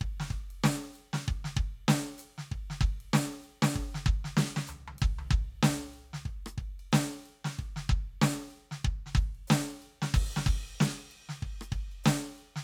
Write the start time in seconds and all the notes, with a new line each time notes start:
0.01 kick
0.20 snare
0.30 kick, ride bell
0.51 ride
0.63 snare, hi-hat pedal
0.84 ride bell
0.93 hi-hat pedal, ride
1.13 snare
1.27 kick, ride
1.44 snare
1.56 kick, ride bell
1.88 snare, hi-hat pedal
2.18 hi-hat pedal, ride
2.38 snare
2.52 kick
2.70 snare
2.81 kick, ride bell
3.00 ride
3.13 snare, hi-hat pedal
3.33 ride bell
3.41 hi-hat pedal, ride
3.62 snare
3.76 kick
3.95 snare
4.06 kick, ride bell
4.24 snare
4.37 snare, hi-hat pedal
4.56 snare
4.67 floor tom, hi-hat pedal
4.88 floor tom
4.98 kick, ride
5.19 floor tom
5.31 kick, ride bell
5.63 snare, hi-hat pedal
5.94 ride
6.13 snare
6.25 kick
6.46 cross-stick
6.58 kick, ride bell
6.79 ride bell
6.92 snare, hi-hat pedal
7.14 ride bell
7.26 ride
7.45 snare
7.59 kick, ride
7.76 snare
7.88 kick, ride bell
8.22 snare, hi-hat pedal
8.51 ride bell
8.71 snare
8.85 kick
9.06 snare
9.15 kick, ride
9.35 kick, ride
9.47 snare, hi-hat pedal
9.71 ride
9.82 ride bell
10.02 snare
10.14 kick, crash
10.36 snare
10.46 kick, ride bell
10.80 snare, hi-hat pedal
11.11 ride bell
11.29 snare
11.42 kick
11.61 cross-stick
11.72 kick, ride bell
11.92 ride bell
12.04 snare, hi-hat pedal
12.26 ride bell
12.38 ride bell
12.56 snare